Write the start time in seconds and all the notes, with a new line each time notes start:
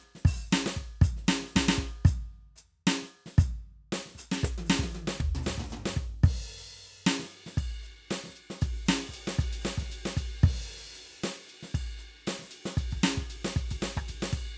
0.01 closed hi-hat
0.15 snare
0.25 open hi-hat, kick, snare
0.51 snare, hi-hat pedal
0.66 snare
0.76 kick
1.02 closed hi-hat, kick
1.17 snare
1.22 snare
1.27 snare, hi-hat pedal
1.42 snare
1.45 snare
1.48 snare
1.51 snare
1.56 kick, snare
1.68 snare
1.78 kick
2.05 closed hi-hat, kick
2.56 closed hi-hat, hi-hat pedal
2.87 closed hi-hat, snare
3.02 snare
3.13 closed hi-hat
3.26 snare
3.38 closed hi-hat, kick
3.92 closed hi-hat, snare
4.06 snare
4.09 snare
4.14 closed hi-hat, kick, snare
4.32 snare
4.43 kick, high tom
4.58 high tom
4.66 hi-hat pedal
4.70 snare
4.79 kick, snare
4.83 high tom
4.91 hi-hat pedal, high tom
5.07 snare
5.20 kick, mid tom
5.35 mid tom
5.42 hi-hat pedal
5.46 snare
5.58 kick, floor tom
5.62 snare
5.69 floor tom, hi-hat pedal
5.86 snare
5.93 kick, hi-hat pedal
6.23 kick, hi-hat pedal, crash
6.74 hi-hat pedal
7.07 snare, ride
7.20 snare
7.23 snare
7.30 hi-hat pedal, ride
7.46 snare
7.57 kick, ride bell
7.83 hi-hat pedal, ride
8.11 snare, ride bell
8.24 snare
8.27 kick, snare
8.35 hi-hat pedal, ride
8.50 snare
8.62 kick, ride
8.86 snare, hi-hat pedal, ride
8.98 snare
9.01 snare
9.03 snare
9.09 kick, snare, hi-hat pedal
9.14 ride
9.27 snare
9.39 kick, ride
9.53 ride
9.61 snare, hi-hat pedal
9.78 kick, snare, ride
9.89 hi-hat pedal, ride
9.95 kick
10.05 snare
10.17 kick, ride
10.43 kick, crash
10.94 hi-hat pedal, ride
11.23 snare, ride
11.46 hi-hat pedal, ride
11.63 snare
11.74 kick, ride bell
11.98 hi-hat pedal, ride
12.27 snare, ride
12.39 snare
12.42 snare
12.49 hi-hat pedal, ride
12.65 snare
12.77 kick, ride
12.91 kick, ride
13.03 snare, hi-hat pedal
13.17 kick, ride
13.29 hi-hat pedal, ride
13.36 kick
13.45 snare
13.53 kick, hi-hat pedal, ride
13.71 kick, ride
13.81 snare, hi-hat pedal
13.96 kick, cross-stick, ride
14.08 kick, hi-hat pedal, ride
14.22 snare
14.30 kick, hi-hat pedal, ride bell